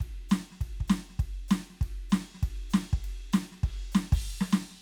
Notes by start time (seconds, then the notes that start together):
0.01 kick, ride
0.30 snare, hi-hat pedal, ride
0.52 snare
0.61 kick, ride
0.81 kick
0.88 snare, hi-hat pedal, ride
1.10 snare
1.20 kick, ride
1.49 snare, hi-hat pedal, ride
1.70 snare
1.82 kick, ride
2.10 snare, hi-hat pedal, ride
2.35 snare
2.43 kick, ride
2.71 snare, hi-hat pedal, ride
2.94 kick
3.05 ride
3.33 snare, hi-hat pedal, ride
3.52 snare
3.64 kick, ride
3.93 snare, hi-hat pedal
4.13 kick, crash
4.41 snare
4.51 snare, hi-hat pedal
4.71 snare